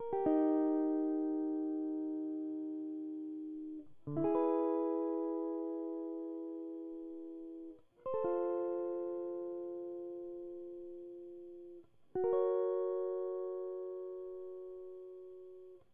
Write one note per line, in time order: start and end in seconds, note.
0.00 2.96 A#4
0.15 3.89 G4
0.29 3.93 D#4
4.17 7.77 E4
4.25 7.78 G#4
4.34 7.86 B4
8.06 10.56 C5
8.14 10.56 A4
8.22 11.88 F4
12.16 15.85 F#4
12.24 15.01 A#4
12.33 15.12 C#5